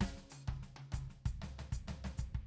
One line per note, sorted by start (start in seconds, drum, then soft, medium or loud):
0.01 kick soft
0.01 snare medium
0.18 snare soft
0.30 hi-hat pedal medium
0.30 high tom medium
0.48 kick soft
0.48 high tom medium
0.63 snare soft
0.77 high tom medium
0.92 kick soft
0.92 hi-hat pedal medium
0.92 high tom medium
1.10 snare soft
1.26 kick medium
1.26 hi-hat pedal medium
1.42 snare soft
1.42 floor tom medium
1.59 snare soft
1.59 floor tom medium
1.73 kick soft
1.73 hi-hat pedal medium
1.88 snare soft
1.88 floor tom medium
2.05 snare soft
2.05 floor tom medium
2.18 kick soft
2.18 hi-hat pedal medium
2.35 kick soft